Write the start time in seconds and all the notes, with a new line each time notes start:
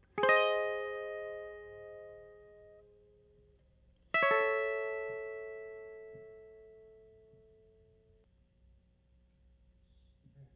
0.18 G#4
0.23 C5
0.29 D#5
4.14 E5 F5
4.23 C#5
4.31 A4